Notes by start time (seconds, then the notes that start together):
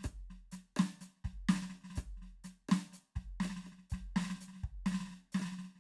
0.01 cross-stick, snare, hi-hat pedal
0.06 kick
0.19 snare
0.31 snare
0.52 snare, hi-hat pedal
0.77 cross-stick, snare
1.02 snare, hi-hat pedal
1.09 snare
1.17 snare
1.25 kick, snare
1.49 snare, hi-hat pedal
1.54 snare
1.56 snare
1.63 snare
1.70 snare
1.76 cross-stick
1.81 snare
1.84 snare
1.91 snare
1.95 kick, cross-stick, snare, hi-hat pedal
2.17 snare
2.21 snare
2.45 snare, hi-hat pedal
2.69 cross-stick, snare
2.93 snare, hi-hat pedal
3.00 snare
3.16 kick, snare
3.41 snare, hi-hat pedal
3.44 cross-stick, snare
3.50 snare
3.57 snare
3.61 snare
3.65 cross-stick, snare
3.72 snare
3.79 snare
3.91 kick, snare, hi-hat pedal
4.17 snare
4.18 snare
4.21 snare
4.25 snare
4.28 snare
4.31 snare
4.36 snare
4.41 snare, hi-hat pedal
4.48 snare
4.54 snare
4.56 snare
4.60 kick, snare
4.64 snare
4.87 snare, hi-hat pedal
4.92 snare
4.95 snare
4.99 snare
5.01 snare
5.06 snare
5.08 snare
5.12 snare
5.33 snare, hi-hat pedal
5.40 cross-stick, snare
5.46 snare
5.48 snare
5.52 snare
5.59 snare
5.65 snare
5.70 snare
5.76 snare